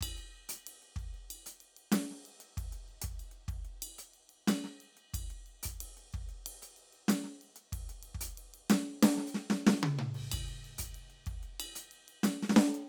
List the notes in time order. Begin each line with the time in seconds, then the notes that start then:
0.01 kick, ride bell
0.17 closed hi-hat
0.32 ride
0.49 closed hi-hat
0.67 ride
0.82 closed hi-hat
0.96 kick, ride
1.14 closed hi-hat
1.30 ride bell
1.46 closed hi-hat
1.60 ride
1.76 ride
1.92 snare, ride
2.11 snare
2.25 ride
2.40 closed hi-hat
2.57 kick, cross-stick, floor tom, ride
2.72 closed hi-hat
2.88 ride
3.01 kick, closed hi-hat
3.19 ride bell
3.31 closed hi-hat
3.48 kick, ride
3.65 closed hi-hat
3.82 ride bell
3.98 closed hi-hat
4.13 ride
4.29 ride
4.47 snare, ride bell
4.64 snare
4.80 ride
4.97 closed hi-hat
5.13 kick, ride bell
5.30 closed hi-hat
5.46 ride
5.63 closed hi-hat, kick
5.80 ride
5.97 closed hi-hat
6.13 kick, ride
6.29 closed hi-hat
6.46 ride
6.62 closed hi-hat
6.76 ride
6.92 ride
7.08 snare, ride bell
7.24 snare
7.41 ride
7.56 closed hi-hat
7.72 kick, cross-stick, floor tom, ride
7.89 closed hi-hat
8.03 ride
8.14 kick
8.21 closed hi-hat
8.37 ride
8.54 ride
8.69 snare, ride bell
9.02 snare, ride
9.17 snare
9.27 hi-hat pedal
9.34 snare
9.50 snare
9.66 snare
9.83 high tom
9.99 mid tom
10.14 crash
10.19 kick
10.31 kick, hi-hat pedal, ride bell
10.48 closed hi-hat
10.64 ride
10.78 closed hi-hat, kick
10.94 ride
11.10 closed hi-hat
11.26 kick, ride
11.43 closed hi-hat
11.60 ride bell
11.75 closed hi-hat
11.91 ride
12.08 ride
12.23 snare, ride bell
12.42 snare
12.49 snare
12.56 snare
12.74 closed hi-hat